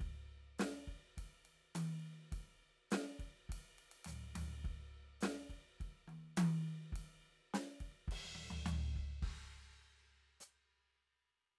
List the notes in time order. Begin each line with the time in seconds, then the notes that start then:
0.01 kick, ride
0.59 snare, hi-hat pedal, ride
0.88 kick, ride
1.18 kick, ride
1.45 high tom, ride
1.75 hi-hat pedal, high tom, ride
2.00 ride
2.32 kick, ride
2.91 snare, hi-hat pedal, ride
3.19 kick, ride
3.50 kick, ride
3.79 ride
3.92 ride
4.05 floor tom, hi-hat pedal, ride
4.36 floor tom, ride
4.65 kick, ride
5.21 snare, hi-hat pedal, ride
5.50 kick, ride
5.81 kick, ride
6.08 high tom, ride
6.37 hi-hat pedal, high tom, ride
6.93 kick, ride
7.54 snare, hi-hat pedal, ride
7.81 kick, ride
8.08 kick, ride
8.25 floor tom
8.35 floor tom
8.50 floor tom
8.66 floor tom, hi-hat pedal
8.96 kick
9.23 kick, crash
10.41 hi-hat pedal